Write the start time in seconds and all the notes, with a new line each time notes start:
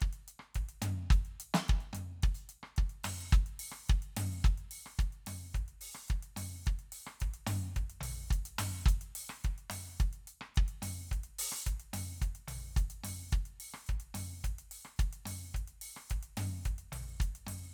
0.01 kick, snare, closed hi-hat
0.13 closed hi-hat
0.28 closed hi-hat
0.40 cross-stick
0.55 kick, closed hi-hat
0.69 closed hi-hat
0.82 kick, closed hi-hat, high tom
1.11 kick, closed hi-hat
1.25 closed hi-hat
1.40 kick, closed hi-hat
1.54 snare
1.69 kick, closed hi-hat
1.81 closed hi-hat
1.93 kick, closed hi-hat, high tom
2.23 kick, closed hi-hat
2.35 closed hi-hat
2.49 closed hi-hat
2.63 cross-stick
2.77 kick, closed hi-hat
2.90 closed hi-hat
3.04 open hi-hat, high tom
3.31 kick, closed hi-hat, hi-hat pedal
3.46 closed hi-hat
3.60 open hi-hat
3.72 cross-stick
3.87 kick, closed hi-hat, hi-hat pedal
4.02 closed hi-hat
4.17 open hi-hat, high tom
4.42 kick, closed hi-hat, hi-hat pedal
4.58 closed hi-hat
4.71 open hi-hat
4.86 cross-stick
4.97 kick, closed hi-hat, hi-hat pedal
5.13 closed hi-hat
5.27 open hi-hat, high tom
5.54 kick, closed hi-hat, hi-hat pedal
5.68 closed hi-hat
5.81 open hi-hat
5.95 cross-stick
6.08 kick, closed hi-hat, hi-hat pedal
6.23 closed hi-hat
6.37 open hi-hat, high tom
6.64 kick, closed hi-hat, hi-hat pedal
6.79 closed hi-hat
6.92 open hi-hat
7.07 cross-stick
7.20 kick, closed hi-hat, hi-hat pedal
7.34 closed hi-hat
7.47 open hi-hat, high tom
7.74 kick, closed hi-hat, hi-hat pedal
7.90 closed hi-hat
8.01 floor tom, open hi-hat
8.28 kick, hi-hat pedal
8.33 closed hi-hat
8.46 closed hi-hat
8.59 open hi-hat, high tom
8.84 kick, hi-hat pedal
8.89 closed hi-hat
9.01 closed hi-hat
9.16 open hi-hat
9.30 cross-stick
9.40 hi-hat pedal
9.44 kick, closed hi-hat
9.58 closed hi-hat
9.70 open hi-hat, high tom
9.97 kick, closed hi-hat, hi-hat pedal
10.13 closed hi-hat
10.28 open hi-hat
10.41 cross-stick
10.55 kick, closed hi-hat, hi-hat pedal
10.68 closed hi-hat
10.82 open hi-hat, high tom
11.09 kick, hi-hat pedal
11.13 closed hi-hat
11.24 closed hi-hat
11.39 open hi-hat
11.52 cross-stick
11.63 kick, closed hi-hat, hi-hat pedal
11.80 closed hi-hat
11.94 open hi-hat, high tom
12.18 kick, hi-hat pedal
12.23 closed hi-hat
12.35 closed hi-hat
12.48 floor tom, open hi-hat
12.75 kick, closed hi-hat, hi-hat pedal
12.90 closed hi-hat
13.04 open hi-hat, high tom
13.31 kick, closed hi-hat, hi-hat pedal
13.46 closed hi-hat
13.60 open hi-hat
13.74 cross-stick
13.86 kick, hi-hat pedal, open hi-hat
14.00 closed hi-hat
14.15 open hi-hat, high tom
14.41 kick, closed hi-hat, hi-hat pedal
14.59 closed hi-hat
14.72 open hi-hat
14.85 cross-stick
14.96 kick, closed hi-hat, hi-hat pedal
15.13 closed hi-hat
15.26 open hi-hat, high tom
15.52 kick, hi-hat pedal
15.57 closed hi-hat
15.68 closed hi-hat
15.82 open hi-hat
15.87 kick
15.97 cross-stick
16.09 kick, closed hi-hat, hi-hat pedal
16.23 closed hi-hat
16.37 open hi-hat, high tom
16.63 kick, closed hi-hat, hi-hat pedal
16.78 closed hi-hat
16.92 floor tom, open hi-hat
17.19 kick, closed hi-hat, hi-hat pedal
17.35 closed hi-hat
17.47 open hi-hat, high tom